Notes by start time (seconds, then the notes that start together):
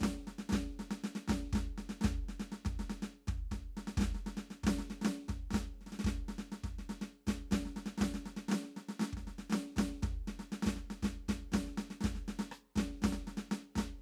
0.01 kick, snare
0.04 snare
0.28 snare
0.39 snare
0.50 kick, snare
0.53 snare
0.80 snare
0.91 snare
1.04 snare
1.16 snare
1.28 kick, snare
1.30 snare
1.53 kick, snare
1.78 snare
1.90 snare
2.01 snare
2.04 kick, snare
2.29 snare
2.40 snare
2.52 snare
2.65 kick, snare
2.80 snare
2.90 snare
3.03 snare
3.28 kick, snare
3.52 kick, snare
3.77 snare
3.88 snare
3.98 kick, snare
4.01 snare
4.15 snare
4.27 snare
4.37 snare
4.51 snare
4.64 kick, snare
4.67 snare
4.79 snare
4.90 snare
5.02 snare
5.05 snare
5.29 kick, snare
5.51 kick, snare
5.55 snare
5.81 snare
5.87 snare
5.92 snare
5.99 snare
6.05 kick, snare
6.29 snare
6.39 snare
6.52 snare
6.64 kick, snare
6.79 snare
6.90 snare
7.02 snare
7.27 kick, snare
7.52 kick, snare
7.66 snare
7.77 snare
7.86 snare
7.98 kick, snare
8.02 snare
8.14 snare
8.26 snare
8.37 snare
8.49 snare
8.52 snare
8.64 snare
8.77 snare
8.89 snare
9.00 snare
9.02 snare
9.13 kick
9.17 snare
9.39 snare
9.50 snare
9.53 snare
9.77 kick, snare
9.79 snare
10.03 kick, snare
10.28 snare
10.40 snare
10.52 snare
10.63 kick, snare
10.67 snare
10.76 snare
10.91 snare
11.03 kick, snare
11.29 kick, snare
11.52 kick, snare
11.54 snare
11.67 snare
11.78 snare
11.91 snare
12.01 kick, snare
12.04 snare
12.16 snare
12.28 snare
12.39 snare
12.52 cross-stick
12.76 kick, snare
12.78 snare
13.02 kick, snare
13.04 snare
13.13 snare
13.28 snare
13.52 snare
13.76 kick, snare
13.78 snare